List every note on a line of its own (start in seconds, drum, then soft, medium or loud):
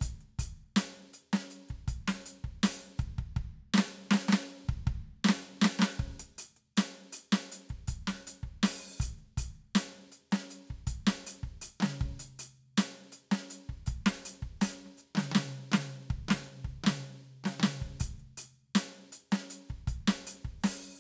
0.01 closed hi-hat loud
0.01 kick medium
0.01 hi-hat pedal medium
0.21 closed hi-hat soft
0.39 closed hi-hat loud
0.39 kick medium
0.77 closed hi-hat loud
0.77 snare loud
0.95 closed hi-hat soft
1.14 closed hi-hat medium
1.34 snare loud
1.34 closed hi-hat soft
1.51 closed hi-hat medium
1.69 kick soft
1.69 closed hi-hat soft
1.88 closed hi-hat medium
1.88 kick medium
2.08 snare loud
2.26 closed hi-hat loud
2.45 kick medium
2.64 open hi-hat loud
2.64 snare loud
2.99 kick medium
2.99 hi-hat pedal medium
3.19 kick medium
3.27 kick soft
3.37 kick medium
3.74 snare loud
3.78 snare loud
4.11 snare loud
4.14 snare loud
4.29 snare loud
4.33 snare loud
4.65 kick soft
4.69 kick medium
4.88 kick medium
4.92 crash soft
4.92 ride soft
5.25 snare loud
5.29 snare loud
5.62 snare loud
5.65 snare loud
5.80 snare loud
5.82 snare loud
6.00 kick medium
6.20 closed hi-hat loud
6.39 closed hi-hat loud
6.57 closed hi-hat soft
6.78 closed hi-hat loud
6.78 snare loud
6.96 closed hi-hat soft
7.13 closed hi-hat loud
7.33 snare loud
7.52 closed hi-hat loud
7.70 kick soft
7.70 closed hi-hat soft
7.88 closed hi-hat loud
7.88 kick medium
8.08 snare medium
8.28 closed hi-hat loud
8.44 kick soft
8.64 open hi-hat loud
8.64 snare loud
9.00 closed hi-hat loud
9.00 kick medium
9.00 hi-hat pedal medium
9.19 closed hi-hat soft
9.38 closed hi-hat loud
9.38 kick medium
9.76 closed hi-hat loud
9.76 snare loud
10.12 closed hi-hat medium
10.32 snare loud
10.32 closed hi-hat soft
10.51 closed hi-hat medium
10.68 kick soft
10.68 closed hi-hat soft
10.88 closed hi-hat loud
10.88 kick medium
11.07 snare loud
11.27 closed hi-hat loud
11.44 kick soft
11.44 closed hi-hat soft
11.62 closed hi-hat loud
11.81 snare loud
11.81 high tom loud
12.01 kick medium
12.20 closed hi-hat loud
12.40 closed hi-hat loud
12.78 closed hi-hat loud
12.78 snare loud
12.97 closed hi-hat soft
13.04 snare soft
13.13 closed hi-hat medium
13.32 snare loud
13.32 closed hi-hat soft
13.51 closed hi-hat loud
13.68 kick soft
13.68 closed hi-hat soft
13.87 closed hi-hat medium
13.87 kick medium
14.07 snare loud
14.26 closed hi-hat loud
14.43 kick soft
14.43 closed hi-hat soft
14.62 open hi-hat loud
14.62 snare loud
14.86 snare soft
14.98 hi-hat pedal medium
15.16 snare loud
15.16 high tom loud
15.32 snare loud
15.32 hi-hat pedal soft
15.32 high tom loud
15.72 snare loud
15.72 hi-hat pedal soft
15.72 high tom loud
16.11 kick medium
16.29 snare loud
16.29 high tom loud
16.33 high tom loud
16.65 kick medium
16.84 snare loud
16.84 high tom loud
17.45 snare loud
17.45 high tom medium
17.60 snare loud
17.60 high tom loud
17.82 kick soft
18.00 closed hi-hat loud
18.00 kick medium
18.20 closed hi-hat soft
18.38 closed hi-hat loud
18.76 closed hi-hat loud
18.76 snare loud
18.95 closed hi-hat soft
19.13 closed hi-hat medium
19.32 snare loud
19.32 closed hi-hat soft
19.51 closed hi-hat loud
19.70 kick soft
19.70 closed hi-hat soft
19.88 closed hi-hat medium
19.88 kick medium
20.08 snare loud
20.27 closed hi-hat loud
20.44 kick soft
20.44 closed hi-hat soft
20.60 hi-hat pedal soft
20.64 open hi-hat loud
20.64 snare loud